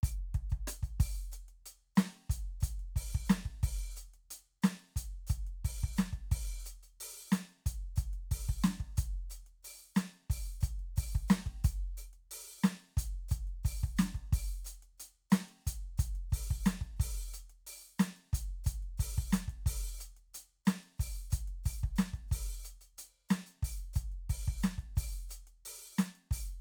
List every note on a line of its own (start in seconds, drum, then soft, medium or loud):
0.03 open hi-hat loud
0.03 kick medium
0.34 kick medium
0.34 closed hi-hat soft
0.50 closed hi-hat soft
0.50 kick medium
0.68 closed hi-hat loud
0.68 cross-stick medium
0.83 closed hi-hat soft
0.83 kick soft
1.00 open hi-hat loud
1.00 kick medium
1.32 closed hi-hat medium
1.32 hi-hat pedal medium
1.48 closed hi-hat soft
1.66 open hi-hat medium
1.96 closed hi-hat medium
1.96 snare loud
1.96 hi-hat pedal soft
2.13 closed hi-hat soft
2.30 open hi-hat medium
2.30 kick medium
2.60 closed hi-hat loud
2.60 kick medium
2.60 hi-hat pedal medium
2.79 closed hi-hat soft
2.96 open hi-hat loud
2.96 kick medium
3.15 kick medium
3.27 closed hi-hat medium
3.27 snare loud
3.27 hi-hat pedal medium
3.45 kick soft
3.45 closed hi-hat soft
3.63 open hi-hat loud
3.63 kick medium
3.96 closed hi-hat medium
3.96 hi-hat pedal soft
4.14 closed hi-hat soft
4.31 open hi-hat loud
4.62 closed hi-hat medium
4.62 snare loud
4.62 hi-hat pedal medium
4.79 closed hi-hat soft
4.96 open hi-hat loud
4.96 kick medium
5.27 closed hi-hat medium
5.27 kick medium
5.27 hi-hat pedal medium
5.47 closed hi-hat soft
5.65 open hi-hat loud
5.65 kick medium
5.83 kick medium
5.96 closed hi-hat medium
5.96 snare loud
5.96 hi-hat pedal medium
6.13 kick soft
6.13 closed hi-hat soft
6.32 open hi-hat loud
6.32 kick medium
6.65 closed hi-hat medium
6.65 hi-hat pedal medium
6.83 closed hi-hat soft
7.00 open hi-hat loud
7.31 closed hi-hat medium
7.31 snare loud
7.31 hi-hat pedal medium
7.49 closed hi-hat soft
7.66 closed hi-hat loud
7.66 kick medium
7.96 closed hi-hat medium
7.96 kick medium
7.96 hi-hat pedal medium
8.13 closed hi-hat soft
8.31 open hi-hat loud
8.31 kick medium
8.49 kick medium
8.62 closed hi-hat medium
8.62 snare loud
8.62 hi-hat pedal medium
8.80 kick soft
8.80 closed hi-hat soft
8.96 closed hi-hat loud
8.96 kick medium
8.96 hi-hat pedal soft
9.30 closed hi-hat medium
9.30 hi-hat pedal medium
9.46 closed hi-hat soft
9.63 open hi-hat loud
9.63 hi-hat pedal soft
9.95 closed hi-hat medium
9.95 snare loud
9.95 hi-hat pedal medium
10.14 closed hi-hat soft
10.30 open hi-hat loud
10.30 kick medium
10.61 closed hi-hat medium
10.61 kick medium
10.61 hi-hat pedal medium
10.79 closed hi-hat soft
10.96 open hi-hat loud
10.96 kick medium
10.96 hi-hat pedal soft
11.15 kick medium
11.28 closed hi-hat medium
11.28 snare loud
11.28 hi-hat pedal medium
11.46 kick soft
11.46 closed hi-hat soft
11.64 open hi-hat loud
11.64 kick medium
11.64 hi-hat pedal soft
11.97 open hi-hat medium
11.97 hi-hat pedal medium
12.13 closed hi-hat soft
12.31 open hi-hat loud
12.63 closed hi-hat medium
12.63 snare loud
12.63 hi-hat pedal medium
12.80 closed hi-hat soft
12.97 closed hi-hat loud
12.97 kick medium
13.29 closed hi-hat medium
13.29 kick medium
13.29 hi-hat pedal medium
13.47 closed hi-hat soft
13.63 open hi-hat loud
13.63 kick medium
13.63 hi-hat pedal soft
13.83 kick medium
13.97 closed hi-hat medium
13.97 snare loud
13.97 hi-hat pedal soft
14.15 kick soft
14.15 closed hi-hat soft
14.33 open hi-hat loud
14.33 kick medium
14.65 closed hi-hat medium
14.65 hi-hat pedal medium
14.83 closed hi-hat soft
14.98 closed hi-hat medium
14.98 hi-hat pedal soft
15.30 closed hi-hat loud
15.30 snare loud
15.30 hi-hat pedal soft
15.48 closed hi-hat soft
15.65 closed hi-hat loud
15.65 kick medium
15.65 hi-hat pedal soft
15.98 closed hi-hat loud
15.98 kick medium
15.98 hi-hat pedal medium
16.15 closed hi-hat soft
16.30 open hi-hat loud
16.30 kick medium
16.30 hi-hat pedal soft
16.51 kick medium
16.63 closed hi-hat medium
16.63 snare loud
16.63 hi-hat pedal soft
16.81 kick soft
16.81 closed hi-hat soft
16.97 kick medium
16.97 hi-hat pedal soft
17.01 open hi-hat loud
17.32 closed hi-hat medium
17.32 hi-hat pedal soft
17.50 closed hi-hat soft
17.67 open hi-hat loud
17.99 closed hi-hat medium
17.99 snare loud
17.99 hi-hat pedal soft
18.16 closed hi-hat soft
18.33 closed hi-hat loud
18.33 kick medium
18.64 closed hi-hat loud
18.64 kick medium
18.64 hi-hat pedal medium
18.83 closed hi-hat soft
18.98 open hi-hat loud
18.98 kick medium
18.98 hi-hat pedal soft
19.18 kick medium
19.30 closed hi-hat loud
19.30 snare loud
19.30 hi-hat pedal medium
19.48 kick soft
19.48 closed hi-hat soft
19.66 open hi-hat loud
19.66 kick medium
19.99 closed hi-hat medium
19.99 hi-hat pedal soft
20.17 closed hi-hat soft
20.34 closed hi-hat loud
20.34 hi-hat pedal soft
20.65 closed hi-hat medium
20.65 snare loud
20.65 hi-hat pedal soft
20.83 closed hi-hat soft
20.98 open hi-hat loud
20.98 kick medium
20.98 hi-hat pedal soft
21.30 closed hi-hat loud
21.30 kick medium
21.30 hi-hat pedal medium
21.48 closed hi-hat soft
21.64 open hi-hat loud
21.64 kick medium
21.64 hi-hat pedal soft
21.83 kick medium
21.96 closed hi-hat medium
21.96 snare loud
21.96 hi-hat pedal medium
22.13 kick soft
22.13 closed hi-hat soft
22.28 kick medium
22.28 hi-hat pedal soft
22.32 open hi-hat loud
22.64 closed hi-hat medium
22.64 hi-hat pedal soft
22.81 closed hi-hat soft
22.98 open hi-hat medium
22.98 hi-hat pedal soft
23.29 closed hi-hat medium
23.29 snare loud
23.29 hi-hat pedal soft
23.46 closed hi-hat soft
23.63 open hi-hat loud
23.63 kick medium
23.63 hi-hat pedal soft
23.93 closed hi-hat medium
23.93 kick medium
23.93 hi-hat pedal medium
24.12 closed hi-hat soft
24.30 open hi-hat loud
24.30 kick medium
24.48 kick medium
24.60 closed hi-hat medium
24.60 snare loud
24.60 hi-hat pedal medium
24.78 kick soft
24.78 closed hi-hat soft
24.96 open hi-hat loud
24.96 kick medium
24.96 hi-hat pedal soft
25.29 closed hi-hat medium
25.29 hi-hat pedal soft
25.47 closed hi-hat soft
25.65 open hi-hat loud
25.97 closed hi-hat medium
25.97 snare loud
25.97 hi-hat pedal soft
26.15 closed hi-hat soft
26.31 open hi-hat loud
26.31 kick medium
26.31 hi-hat pedal soft